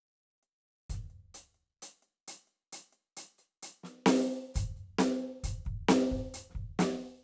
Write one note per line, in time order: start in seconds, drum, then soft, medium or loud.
0.43 closed hi-hat soft
0.89 closed hi-hat medium
0.89 kick soft
0.89 snare soft
1.10 closed hi-hat soft
1.34 closed hi-hat loud
1.54 closed hi-hat soft
1.82 closed hi-hat loud
2.02 closed hi-hat soft
2.28 closed hi-hat loud
2.47 closed hi-hat soft
2.72 closed hi-hat loud
2.92 closed hi-hat soft
3.17 closed hi-hat loud
3.38 closed hi-hat soft
3.62 closed hi-hat loud
3.83 closed hi-hat medium
3.83 snare soft
4.06 open hi-hat loud
4.06 snare loud
4.54 closed hi-hat loud
4.54 kick medium
4.54 hi-hat pedal medium
4.76 closed hi-hat soft
4.98 closed hi-hat loud
4.98 snare loud
5.18 closed hi-hat soft
5.43 closed hi-hat loud
5.43 kick medium
5.65 kick medium
5.65 closed hi-hat soft
5.88 closed hi-hat loud
5.88 snare loud
6.11 kick soft
6.34 closed hi-hat loud
6.50 snare soft
6.55 kick soft
6.55 closed hi-hat soft
6.79 closed hi-hat loud
6.79 snare loud
6.99 closed hi-hat soft